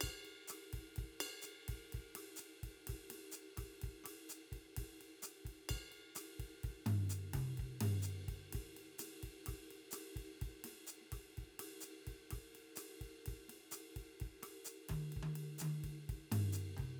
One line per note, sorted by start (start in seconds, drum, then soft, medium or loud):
0.01 kick soft
0.01 ride bell loud
0.09 kick soft
0.25 ride soft
0.48 cross-stick soft
0.48 hi-hat pedal medium
0.48 ride medium
0.73 kick soft
0.73 ride medium
0.79 kick soft
0.96 kick soft
0.96 ride medium
1.04 kick soft
1.21 ride bell loud
1.42 hi-hat pedal medium
1.42 ride soft
1.68 kick soft
1.68 ride medium
1.74 kick soft
1.93 kick soft
1.93 ride soft
1.99 kick soft
2.15 cross-stick soft
2.15 ride medium
2.36 hi-hat pedal medium
2.36 ride medium
2.63 kick soft
2.63 ride soft
2.87 kick soft
2.87 cross-stick soft
2.87 ride medium
2.94 kick soft
3.10 snare soft
3.10 ride medium
3.32 hi-hat pedal medium
3.32 ride soft
3.57 kick soft
3.57 cross-stick soft
3.57 snare soft
3.57 ride medium
3.63 kick soft
3.82 kick soft
3.82 ride soft
3.89 kick soft
4.04 cross-stick soft
4.04 ride medium
4.29 hi-hat pedal medium
4.29 ride soft
4.52 kick soft
4.52 ride soft
4.76 kick soft
4.76 snare soft
4.76 ride medium
4.83 kick soft
5.01 ride soft
5.22 cross-stick soft
5.22 hi-hat pedal medium
5.22 ride medium
5.45 kick soft
5.45 ride soft
5.69 kick soft
5.69 ride bell loud
5.76 kick soft
5.92 ride soft
6.15 cross-stick soft
6.15 hi-hat pedal medium
6.15 ride medium
6.40 kick soft
6.40 ride soft
6.64 kick soft
6.64 ride soft
6.70 kick soft
6.86 floor tom loud
6.86 ride medium
7.10 hi-hat pedal medium
7.10 ride soft
7.34 kick soft
7.34 mid tom medium
7.34 ride medium
7.40 kick soft
7.58 kick soft
7.58 ride soft
7.65 kick soft
7.81 floor tom loud
7.81 ride medium
8.02 hi-hat pedal medium
8.02 ride soft
8.28 kick soft
8.28 ride soft
8.34 kick soft
8.53 kick soft
8.53 snare soft
8.53 ride medium
8.60 kick soft
8.77 ride soft
8.99 snare soft
8.99 hi-hat pedal medium
8.99 ride medium
9.23 kick soft
9.23 ride soft
9.46 kick soft
9.46 cross-stick soft
9.46 snare soft
9.46 ride medium
9.54 kick soft
9.71 ride soft
9.91 cross-stick soft
9.91 snare soft
9.91 hi-hat pedal medium
9.91 ride medium
10.16 kick soft
10.16 ride soft
10.42 kick soft
10.42 ride soft
10.47 kick soft
10.64 snare soft
10.64 ride medium
10.87 hi-hat pedal medium
10.87 ride soft
11.01 snare soft
11.12 kick soft
11.12 cross-stick soft
11.12 snare soft
11.12 ride medium
11.37 kick soft
11.37 ride soft
11.43 kick soft
11.59 cross-stick soft
11.59 snare soft
11.59 ride medium
11.81 hi-hat pedal medium
11.81 ride soft
12.07 kick soft
12.07 ride soft
12.31 kick soft
12.31 cross-stick soft
12.31 snare soft
12.31 ride medium
12.38 kick soft
12.55 ride soft
12.76 cross-stick soft
12.76 snare soft
12.76 hi-hat pedal medium
12.76 ride medium
13.01 kick soft
13.01 ride soft
13.26 kick soft
13.26 cross-stick soft
13.26 ride medium
13.33 kick soft
13.48 snare soft
13.48 ride medium
13.71 cross-stick soft
13.71 hi-hat pedal medium
13.71 ride medium
13.96 kick soft
13.96 ride soft
14.20 kick soft
14.20 ride soft
14.27 kick soft
14.43 cross-stick soft
14.43 ride medium
14.65 hi-hat pedal medium
14.65 ride soft
14.89 kick soft
14.89 high tom medium
14.89 ride medium
14.96 kick soft
15.12 ride soft
15.17 kick soft
15.22 kick soft
15.22 high tom medium
15.36 ride medium
15.58 hi-hat pedal medium
15.58 high tom medium
15.58 ride medium
15.84 kick soft
15.84 ride soft
16.09 kick soft
16.09 ride soft
16.15 kick soft
16.32 floor tom loud
16.32 ride medium
16.53 hi-hat pedal medium
16.57 ride soft
16.77 kick soft
16.77 mid tom medium
16.77 ride soft
16.85 kick soft